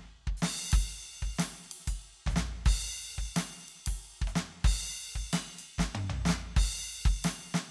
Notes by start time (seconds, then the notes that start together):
0.27 kick
0.37 hi-hat pedal
0.42 snare, crash
0.72 kick, ride
0.87 snare
0.92 snare
1.22 kick
1.34 hi-hat pedal
1.39 snare, ride
1.71 ride
1.80 snare
1.84 kick, snare, ride bell
2.26 kick, floor tom, hi-hat pedal
2.36 snare
2.66 kick, crash
2.80 snare
3.18 kick
3.35 snare, hi-hat pedal, ride
3.68 ride
3.75 snare
3.78 snare
3.86 kick, ride
4.21 kick
4.27 hi-hat pedal, high tom
4.35 snare
4.64 kick, crash
4.82 snare
4.89 snare
4.92 snare
5.15 kick
5.29 hi-hat pedal
5.33 snare, ride bell
5.59 ride bell
5.78 kick, snare
5.95 high tom
6.10 floor tom
6.25 snare
6.29 snare
6.56 kick, crash
6.78 snare
6.81 snare
6.83 snare
7.05 kick
7.22 snare, hi-hat pedal, ride
7.54 snare